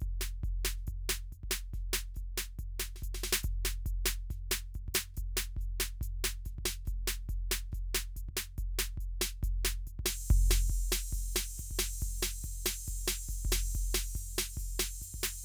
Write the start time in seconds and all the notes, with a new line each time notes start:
0.01 closed hi-hat, kick
0.22 closed hi-hat, snare
0.44 kick, closed hi-hat
0.65 closed hi-hat, snare
0.78 snare
0.87 closed hi-hat, kick
1.10 closed hi-hat, snare
1.33 kick, closed hi-hat
1.44 kick
1.52 closed hi-hat, snare
1.74 kick, snare, closed hi-hat
1.94 closed hi-hat, snare
2.15 kick, snare, closed hi-hat
2.38 closed hi-hat, snare
2.59 kick, closed hi-hat
2.80 closed hi-hat, snare
2.89 snare
2.96 snare
3.03 closed hi-hat, kick
3.15 snare
3.24 snare
3.33 snare
3.44 closed hi-hat, kick, snare
3.66 closed hi-hat, snare
3.87 closed hi-hat, kick
4.06 closed hi-hat, snare
4.31 kick, snare, closed hi-hat
4.52 closed hi-hat, snare
4.75 kick, closed hi-hat
4.89 kick
4.95 closed hi-hat, snare
5.15 closed hi-hat, kick, snare
5.37 closed hi-hat, snare
5.57 kick, snare
5.62 closed hi-hat
5.81 closed hi-hat, snare
6.02 closed hi-hat, kick, snare
6.25 closed hi-hat, snare
6.46 kick, snare, closed hi-hat
6.59 kick
6.66 closed hi-hat, snare
6.86 kick, snare, closed hi-hat
7.08 closed hi-hat, snare
7.30 kick, snare, closed hi-hat
7.52 closed hi-hat, snare
7.72 kick, snare, closed hi-hat
7.95 closed hi-hat, snare
8.17 closed hi-hat, kick
8.29 kick
8.37 closed hi-hat, snare
8.59 kick, closed hi-hat
8.79 closed hi-hat, snare
8.98 kick, closed hi-hat
9.22 closed hi-hat, snare
9.43 closed hi-hat, kick, snare
9.65 closed hi-hat, snare
9.87 kick, closed hi-hat
10.00 kick
10.06 open hi-hat, snare
10.31 open hi-hat, kick
10.51 open hi-hat, snare
10.70 kick, open hi-hat
10.93 open hi-hat, snare
11.13 open hi-hat, kick
11.36 open hi-hat, snare
11.58 open hi-hat, kick, snare
11.72 kick
11.79 open hi-hat, snare
12.02 open hi-hat, kick
12.23 open hi-hat, snare
12.44 open hi-hat, kick
12.66 open hi-hat, snare
12.88 open hi-hat, kick
13.08 open hi-hat, snare
13.22 snare
13.29 open hi-hat, kick
13.46 kick
13.52 open hi-hat, snare
13.66 snare
13.75 open hi-hat, kick
13.95 open hi-hat, snare
14.16 open hi-hat, kick, snare
14.39 open hi-hat, snare
14.58 open hi-hat, kick, snare
14.80 open hi-hat, snare
15.02 open hi-hat, kick
15.15 kick
15.24 open hi-hat, snare